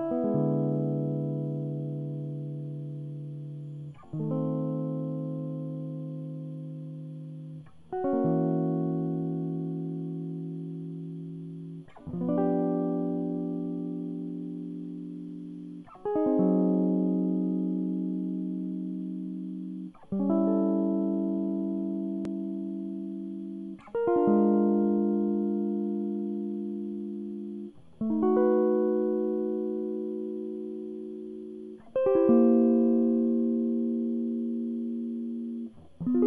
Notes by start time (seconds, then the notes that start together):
0.00 E4
0.12 B3
0.25 G#3
0.35 D3
4.14 D#3
4.20 A3
4.31 C4
7.93 F#4
8.05 C#4
8.14 A#3
8.26 E3
12.14 F3
12.22 B3
12.29 D4
12.38 G4
16.06 G#4
16.16 D#4
16.27 C4
16.40 F#3
20.13 G3
20.20 C#4
20.30 E4
20.48 A4
23.95 A#4
24.08 F4
24.16 D4
24.28 G#3
28.02 A3
28.11 D#4
28.23 F#4
28.37 B4
31.96 C5
32.07 G4
32.16 E4
32.30 A#3
36.07 B3
36.15 F4